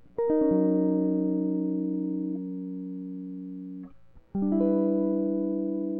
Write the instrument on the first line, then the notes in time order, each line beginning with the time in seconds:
electric guitar
0.18 A#4
0.30 D#4
0.42 C#4
0.52 F#3
4.35 G3
4.42 D4
4.52 E4
4.60 B4